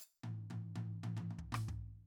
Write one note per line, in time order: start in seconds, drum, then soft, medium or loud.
0.00 percussion medium
0.23 floor tom medium
0.23 high tom soft
0.50 floor tom medium
0.50 high tom medium
0.75 floor tom medium
0.75 high tom medium
1.03 floor tom medium
1.03 high tom medium
1.16 floor tom medium
1.16 high tom medium
1.30 floor tom soft
1.38 kick soft
1.52 cross-stick medium
1.52 floor tom medium
1.68 kick soft